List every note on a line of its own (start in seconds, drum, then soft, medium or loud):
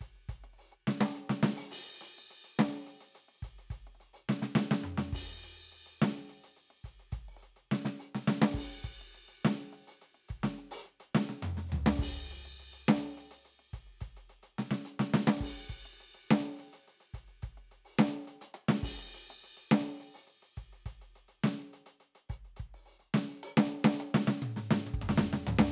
0.01 closed hi-hat medium
0.01 kick soft
0.15 closed hi-hat soft
0.29 closed hi-hat medium
0.29 kick soft
0.44 closed hi-hat soft
0.54 open hi-hat soft
0.58 open hi-hat medium
0.72 open hi-hat medium
0.72 hi-hat pedal soft
0.87 snare loud
1.01 snare loud
1.15 closed hi-hat medium
1.30 snare medium
1.43 snare loud
1.57 open hi-hat loud
1.71 crash medium
2.01 closed hi-hat loud
2.19 closed hi-hat soft
2.31 closed hi-hat medium
2.44 closed hi-hat medium
2.59 snare loud
2.74 closed hi-hat medium
2.87 closed hi-hat medium
3.01 closed hi-hat medium
3.15 closed hi-hat medium
3.29 closed hi-hat soft
3.35 closed hi-hat soft
3.43 closed hi-hat medium
3.43 kick soft
3.59 closed hi-hat soft
3.70 closed hi-hat medium
3.70 kick soft
3.87 closed hi-hat soft
3.95 open hi-hat soft
4.00 open hi-hat medium
4.14 open hi-hat medium
4.29 snare loud
4.42 snare medium
4.55 snare loud
4.71 snare loud
4.84 hi-hat pedal medium
4.84 mid tom medium
4.98 snare medium
5.13 kick soft
5.13 crash medium
5.19 kick soft
5.32 closed hi-hat soft
5.43 closed hi-hat medium
5.72 closed hi-hat soft
5.86 closed hi-hat soft
6.02 snare loud
6.16 closed hi-hat medium
6.29 closed hi-hat medium
6.44 closed hi-hat medium
6.57 closed hi-hat soft
6.70 closed hi-hat soft
6.84 closed hi-hat medium
6.84 kick soft
7.00 closed hi-hat soft
7.12 closed hi-hat medium
7.12 kick soft
7.29 open hi-hat soft
7.37 open hi-hat medium
7.43 closed hi-hat medium
7.56 closed hi-hat medium
7.72 snare loud
7.85 snare medium
7.99 open hi-hat medium
8.03 hi-hat pedal soft
8.15 snare medium
8.28 snare loud
8.42 snare loud
8.49 hi-hat pedal medium
8.54 kick soft
8.54 crash medium
8.84 closed hi-hat medium
8.84 kick soft
9.01 closed hi-hat soft
9.14 closed hi-hat soft
9.28 closed hi-hat medium
9.45 snare loud
9.59 closed hi-hat medium
9.73 closed hi-hat medium
9.87 open hi-hat medium
10.02 closed hi-hat medium
10.15 closed hi-hat soft
10.29 closed hi-hat medium
10.29 kick soft
10.43 snare medium
10.58 open hi-hat medium
10.58 hi-hat pedal soft
10.71 open hi-hat loud
10.86 closed hi-hat medium
11.00 closed hi-hat medium
11.15 snare loud
11.29 snare soft
11.42 hi-hat pedal medium
11.42 mid tom loud
11.57 snare soft
11.69 floor tom loud
11.69 hi-hat pedal medium
11.86 snare loud
11.98 kick medium
11.98 hi-hat pedal medium
11.98 crash loud
12.06 kick soft
12.09 kick soft
12.31 closed hi-hat medium
12.45 closed hi-hat soft
12.59 closed hi-hat soft
12.73 closed hi-hat medium
12.88 snare loud
13.03 closed hi-hat medium
13.17 closed hi-hat medium
13.31 closed hi-hat medium
13.45 closed hi-hat soft
13.59 closed hi-hat soft
13.73 closed hi-hat medium
13.73 kick soft
13.87 closed hi-hat soft
14.01 closed hi-hat medium
14.01 kick soft
14.17 closed hi-hat medium
14.30 closed hi-hat medium
14.43 closed hi-hat medium
14.59 snare medium
14.71 snare medium
14.80 hi-hat pedal soft
14.85 closed hi-hat loud
15.00 snare loud
15.12 snare loud
15.12 hi-hat pedal soft
15.27 snare loud
15.35 hi-hat pedal soft
15.41 kick soft
15.41 crash medium
15.46 kick soft
15.69 closed hi-hat medium
15.69 kick soft
15.86 closed hi-hat soft
15.93 closed hi-hat soft
16.00 closed hi-hat medium
16.14 closed hi-hat medium
16.31 snare loud
16.46 closed hi-hat soft
16.59 closed hi-hat medium
16.73 closed hi-hat medium
16.88 closed hi-hat soft
17.00 closed hi-hat medium
17.14 closed hi-hat medium
17.14 kick soft
17.28 closed hi-hat soft
17.42 closed hi-hat medium
17.42 kick soft
17.57 closed hi-hat soft
17.71 closed hi-hat medium
17.85 open hi-hat medium
17.99 snare loud
18.12 closed hi-hat medium
18.12 hi-hat pedal soft
18.27 closed hi-hat medium
18.41 closed hi-hat loud
18.54 closed hi-hat loud
18.69 snare loud
18.83 kick soft
18.83 crash loud
18.99 closed hi-hat medium
19.14 closed hi-hat medium
19.30 closed hi-hat medium
19.44 closed hi-hat medium
19.57 closed hi-hat medium
19.71 snare loud
19.87 closed hi-hat medium
20.00 closed hi-hat medium
20.14 open hi-hat medium
20.27 closed hi-hat soft
20.42 closed hi-hat soft
20.57 closed hi-hat medium
20.57 kick soft
20.73 closed hi-hat soft
20.86 closed hi-hat medium
20.86 kick soft
21.02 closed hi-hat medium
21.16 closed hi-hat soft
21.28 closed hi-hat medium
21.44 snare loud
21.58 closed hi-hat medium
21.73 closed hi-hat medium
21.86 closed hi-hat medium
22.00 closed hi-hat medium
22.15 closed hi-hat medium
22.29 open hi-hat medium
22.29 kick soft
22.34 hi-hat pedal soft
22.45 closed hi-hat soft
22.57 closed hi-hat medium
22.57 kick soft
22.74 open hi-hat medium
22.86 open hi-hat medium
22.99 open hi-hat medium
23.14 snare loud
23.28 open hi-hat medium
23.43 open hi-hat loud
23.48 hi-hat pedal soft
23.57 snare loud
23.85 snare loud
24.00 closed hi-hat loud
24.14 snare loud
24.27 snare loud
24.33 hi-hat pedal soft
24.42 high tom loud
24.56 snare medium
24.71 snare loud
24.86 hi-hat pedal soft
24.86 high tom medium
24.94 kick medium
25.01 kick soft
25.01 mid tom medium
25.04 kick soft
25.09 snare medium
25.18 snare loud
25.33 snare medium
25.47 floor tom medium
25.59 snare loud
25.65 hi-hat pedal soft